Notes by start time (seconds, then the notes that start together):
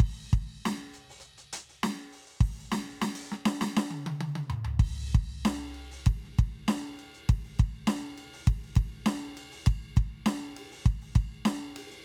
0.01 kick, crash
0.19 open hi-hat
0.34 closed hi-hat, kick
0.51 closed hi-hat
0.66 snare
0.94 closed hi-hat
1.10 open hi-hat
1.21 hi-hat pedal
1.26 closed hi-hat
1.38 closed hi-hat
1.53 closed hi-hat
1.70 open hi-hat
1.84 snare
1.98 open hi-hat
2.13 open hi-hat
2.28 open hi-hat
2.41 open hi-hat, kick
2.59 open hi-hat
2.72 snare
2.88 open hi-hat
3.02 snare
3.16 open hi-hat
3.32 snare
3.46 snare
3.62 snare
3.77 snare
3.91 high tom
4.07 high tom
4.21 high tom
4.36 high tom
4.50 mid tom
4.65 floor tom
4.80 kick, crash
5.15 kick
5.46 snare, ride bell
5.75 ride
5.92 open hi-hat
6.07 kick, open hi-hat, ride
6.25 snare
6.39 kick, snare, ride
6.69 snare, ride bell
7.00 ride bell
7.15 closed hi-hat
7.29 kick, open hi-hat, ride
7.45 open hi-hat
7.59 kick, snare, ride bell
7.88 snare, ride bell
8.18 ride bell
8.34 open hi-hat
8.48 kick, ride
8.63 open hi-hat
8.76 kick, ride
9.06 snare, ride bell
9.38 ride bell
9.52 open hi-hat
9.67 kick, ride bell
9.97 kick, ride bell
10.27 snare, ride bell
10.57 ride
10.72 open hi-hat
10.86 kick, ride bell
11.02 open hi-hat
11.16 kick, ride bell
11.46 snare, ride bell
11.77 ride
11.92 closed hi-hat